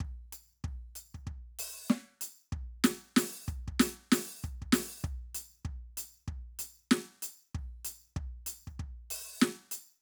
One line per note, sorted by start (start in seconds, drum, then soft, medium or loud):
0.01 kick medium
0.06 crash soft
0.33 percussion loud
0.65 kick medium
0.69 crash soft
0.96 percussion medium
1.15 kick soft
1.27 kick medium
1.60 percussion loud
1.89 snare loud
1.89 percussion soft
2.22 percussion loud
2.53 kick medium
2.85 snare loud
2.85 percussion loud
3.17 snare loud
3.17 percussion loud
3.48 kick medium
3.48 percussion soft
3.68 kick medium
3.80 snare loud
3.80 percussion loud
4.12 snare loud
4.12 percussion loud
4.44 kick medium
4.44 percussion soft
4.62 kick soft
4.73 snare loud
4.73 percussion loud
5.02 kick medium
5.02 percussion soft
5.35 percussion loud
5.65 kick medium
5.98 percussion loud
6.28 kick medium
6.60 percussion loud
6.92 snare loud
7.23 percussion loud
7.55 kick medium
7.60 crash soft
7.85 percussion loud
8.17 kick medium
8.47 percussion loud
8.68 kick soft
8.80 kick medium
9.11 percussion loud
9.41 snare loud
9.41 percussion medium
9.72 percussion loud